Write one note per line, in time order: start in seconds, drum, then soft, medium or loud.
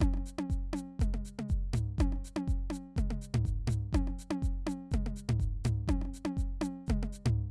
0.01 kick medium
0.01 hi-hat pedal medium
0.01 high tom loud
0.14 high tom medium
0.18 high tom soft
0.27 hi-hat pedal medium
0.39 high tom loud
0.51 kick medium
0.51 hi-hat pedal medium
0.74 hi-hat pedal medium
0.74 high tom loud
1.00 kick medium
1.00 hi-hat pedal medium
1.00 mid tom medium
1.15 mid tom medium
1.26 hi-hat pedal medium
1.40 mid tom loud
1.49 kick medium
1.49 hi-hat pedal medium
1.74 floor tom loud
1.74 hi-hat pedal medium
1.99 kick medium
1.99 hi-hat pedal medium
1.99 high tom loud
2.13 high tom soft
2.17 high tom soft
2.25 hi-hat pedal medium
2.37 high tom loud
2.48 kick medium
2.48 hi-hat pedal medium
2.71 hi-hat pedal medium
2.71 high tom loud
2.97 kick medium
2.97 hi-hat pedal medium
2.97 mid tom medium
3.11 mid tom medium
3.22 hi-hat pedal medium
3.35 floor tom loud
3.46 kick medium
3.46 hi-hat pedal medium
3.68 floor tom loud
3.68 hi-hat pedal medium
3.94 kick medium
3.94 hi-hat pedal medium
3.94 high tom loud
4.08 high tom medium
4.19 hi-hat pedal medium
4.31 high tom loud
4.43 kick medium
4.43 hi-hat pedal medium
4.68 hi-hat pedal medium
4.68 high tom loud
4.92 kick medium
4.92 hi-hat pedal medium
4.92 mid tom loud
5.07 mid tom medium
5.17 hi-hat pedal medium
5.30 floor tom loud
5.41 kick medium
5.41 hi-hat pedal medium
5.65 floor tom loud
5.65 hi-hat pedal medium
5.89 kick medium
5.89 hi-hat pedal medium
5.89 high tom loud
6.02 high tom medium
6.06 high tom soft
6.14 hi-hat pedal medium
6.26 high tom loud
6.38 kick medium
6.38 hi-hat pedal medium
6.62 hi-hat pedal medium
6.62 high tom loud
6.87 kick medium
6.87 hi-hat pedal medium
6.87 mid tom loud
7.03 mid tom medium
7.13 hi-hat pedal medium
7.26 floor tom loud